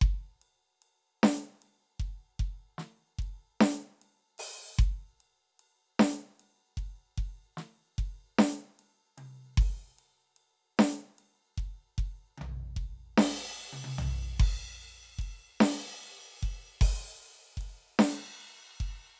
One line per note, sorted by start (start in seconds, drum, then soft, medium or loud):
0.01 kick loud
0.01 ride soft
0.42 ride soft
0.82 ride soft
1.23 snare loud
1.23 ride medium
1.36 snare soft
1.62 ride soft
2.00 kick medium
2.00 ride soft
2.39 kick medium
2.39 ride soft
2.78 snare medium
2.78 ride medium
3.19 kick medium
3.19 ride soft
3.60 snare loud
3.73 snare soft
4.01 ride medium
4.38 open hi-hat loud
4.38 ride soft
4.79 kick loud
4.79 hi-hat pedal soft
4.79 ride medium
5.20 ride soft
5.59 ride medium
5.99 snare loud
5.99 ride medium
6.13 snare soft
6.15 snare soft
6.40 ride medium
6.77 kick medium
6.77 ride medium
7.17 kick medium
7.17 ride medium
7.57 snare medium
7.57 ride medium
7.98 kick medium
7.98 ride medium
8.38 snare loud
8.38 ride medium
8.79 ride medium
9.18 high tom medium
9.18 ride medium
9.57 open hi-hat medium
9.57 kick loud
9.57 ride soft
9.98 ride soft
10.36 ride soft
10.77 snare loud
10.77 hi-hat pedal soft
10.77 ride medium
11.18 ride medium
11.58 kick medium
11.58 ride soft
11.98 kick medium
11.98 ride medium
12.38 floor tom loud
12.38 high tom medium
12.76 kick medium
12.76 ride soft
13.18 snare loud
13.18 crash loud
13.58 hi-hat pedal medium
13.72 high tom medium
13.84 high tom loud
13.98 floor tom loud
13.98 hi-hat pedal medium
14.39 kick loud
14.39 ride medium
14.39 crash medium
14.83 ride soft
15.19 kick medium
15.19 ride medium
15.60 snare loud
15.60 crash loud
16.03 ride medium
16.43 kick medium
16.43 ride medium
16.81 open hi-hat loud
16.81 kick loud
16.81 ride medium
17.23 ride medium
17.57 kick medium
17.57 ride medium
17.95 snare loud
17.95 hi-hat pedal soft
17.99 crash medium
18.41 ride soft
18.80 kick medium
18.80 ride soft